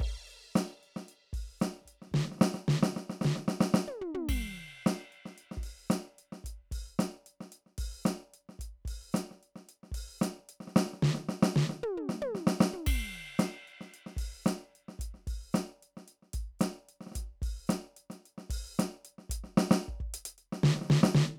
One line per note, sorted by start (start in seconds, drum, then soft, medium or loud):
0.01 kick soft
0.01 crash medium
0.28 open hi-hat soft
0.56 snare loud
0.56 closed hi-hat medium
0.56 hi-hat pedal medium
0.83 closed hi-hat soft
0.97 snare soft
1.09 closed hi-hat soft
1.34 kick soft
1.34 open hi-hat medium
1.61 snare medium
1.61 closed hi-hat medium
1.61 hi-hat pedal medium
1.82 kick soft
1.82 snare soft
1.88 closed hi-hat soft
2.02 snare soft
2.08 snare soft
2.12 kick soft
2.12 snare loud
2.25 snare soft
2.32 snare soft
2.39 snare soft
2.42 snare loud
2.55 snare soft
2.69 snare loud
2.69 hi-hat pedal medium
2.83 snare loud
2.97 snare soft
3.10 snare soft
3.22 snare medium
3.25 snare loud
3.36 snare soft
3.49 snare medium
3.61 snare loud
3.75 snare loud
3.88 high tom medium
4.01 floor tom medium
4.15 floor tom medium
4.29 kick soft
4.29 ride loud
4.87 snare loud
4.87 closed hi-hat medium
5.13 closed hi-hat soft
5.26 snare soft
5.38 closed hi-hat medium
5.52 snare soft
5.58 kick soft
5.64 open hi-hat medium
5.91 snare medium
5.91 closed hi-hat medium
5.91 hi-hat pedal medium
6.19 closed hi-hat soft
6.33 snare soft
6.45 kick soft
6.45 closed hi-hat medium
6.72 kick soft
6.72 open hi-hat medium
7.00 snare medium
7.00 closed hi-hat medium
7.00 hi-hat pedal medium
7.27 closed hi-hat medium
7.41 snare soft
7.53 closed hi-hat medium
7.67 snare soft
7.79 kick soft
7.79 open hi-hat medium
8.04 snare medium
8.04 closed hi-hat medium
8.04 hi-hat pedal medium
8.34 closed hi-hat soft
8.50 snare soft
8.60 kick soft
8.60 closed hi-hat medium
8.86 kick soft
8.86 open hi-hat medium
9.13 snare medium
9.13 closed hi-hat loud
9.13 hi-hat pedal medium
9.32 snare soft
9.43 closed hi-hat soft
9.56 snare soft
9.69 closed hi-hat medium
9.84 snare soft
9.92 kick soft
9.92 open hi-hat medium
10.21 closed hi-hat loud
10.21 snare medium
10.21 hi-hat pedal medium
10.40 snare soft
10.49 closed hi-hat medium
10.61 snare soft
10.68 snare soft
10.77 snare loud
10.87 snare soft
10.94 snare soft
11.03 snare loud
11.15 snare soft
11.29 snare medium
11.43 snare loud
11.57 snare loud
11.70 snare soft
11.83 mid tom loud
11.98 mid tom medium
12.10 snare medium
12.22 high tom loud
12.35 snare soft
12.48 snare loud
12.61 snare loud
12.74 floor tom medium
12.87 kick medium
12.87 ride loud
13.39 snare medium
13.39 closed hi-hat medium
13.39 hi-hat pedal medium
13.68 closed hi-hat soft
13.81 snare soft
13.94 closed hi-hat medium
14.07 snare soft
14.17 kick soft
14.17 open hi-hat medium
14.46 snare medium
14.46 closed hi-hat medium
14.46 hi-hat pedal medium
14.76 closed hi-hat soft
14.89 snare soft
15.00 kick soft
15.00 closed hi-hat medium
15.15 snare soft
15.28 kick soft
15.28 open hi-hat medium
15.53 snare medium
15.53 closed hi-hat medium
15.53 hi-hat pedal medium
15.83 closed hi-hat soft
15.98 snare soft
16.08 closed hi-hat medium
16.23 snare soft
16.34 kick soft
16.34 open hi-hat medium
16.60 snare medium
16.60 closed hi-hat loud
16.60 hi-hat pedal medium
16.89 closed hi-hat soft
17.01 snare soft
17.07 snare soft
17.12 kick soft
17.12 snare soft
17.12 closed hi-hat loud
17.18 snare soft
17.43 kick soft
17.43 open hi-hat medium
17.68 snare medium
17.68 closed hi-hat loud
17.68 hi-hat pedal medium
17.97 closed hi-hat medium
18.11 snare soft
18.11 closed hi-hat soft
18.26 closed hi-hat soft
18.39 snare soft
18.50 kick soft
18.50 open hi-hat loud
18.78 snare medium
18.78 closed hi-hat loud
18.78 hi-hat pedal medium
19.05 closed hi-hat medium
19.19 snare soft
19.30 kick soft
19.30 closed hi-hat loud
19.45 snare soft
19.58 snare loud
19.72 snare loud
19.89 kick soft
20.01 kick soft
20.15 closed hi-hat loud
20.26 closed hi-hat loud
20.39 closed hi-hat soft
20.53 snare medium
20.64 snare loud
20.77 snare soft
20.82 snare soft
20.86 snare soft
20.91 snare loud
21.04 snare loud
21.15 snare loud